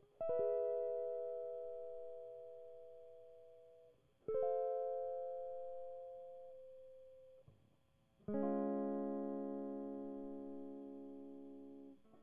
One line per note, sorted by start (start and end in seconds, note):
0.21 3.77 E5
0.30 2.62 B4
0.40 2.20 G#4
4.29 5.94 A4
4.35 7.48 C5
4.44 6.07 F5
8.29 11.95 G#3
8.34 12.01 C#4
8.44 11.65 F4